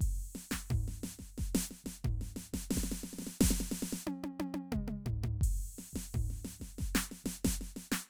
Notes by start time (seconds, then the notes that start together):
0.01 kick, snare, crash
0.35 snare
0.51 kick, snare
0.70 kick, floor tom
0.88 snare
1.03 snare, hi-hat pedal
1.19 kick, snare
1.38 kick, snare
1.55 snare
1.65 hi-hat pedal
1.71 snare
1.84 kick, snare
2.04 kick, floor tom
2.21 snare
2.36 snare, hi-hat pedal
2.53 kick, snare
2.71 snare
2.76 kick, snare
2.83 snare
2.92 snare
3.03 snare
3.13 snare
3.19 snare
3.22 snare
3.27 snare
3.41 kick, snare
3.51 kick, snare
3.60 snare
3.71 snare
3.82 snare
3.93 snare
4.07 high tom
4.24 high tom
4.40 high tom
4.54 high tom
4.72 kick, mid tom
4.88 mid tom
5.06 kick, floor tom
5.24 floor tom
5.41 kick, crash
5.78 snare, hi-hat pedal
5.93 kick, snare
6.14 kick, floor tom
6.30 snare
6.45 snare, hi-hat pedal
6.60 kick, snare
6.78 kick, snare
6.95 snare
7.11 snare, hi-hat pedal
7.24 kick, snare
7.45 kick, snare
7.61 snare
7.76 snare, hi-hat pedal
7.92 snare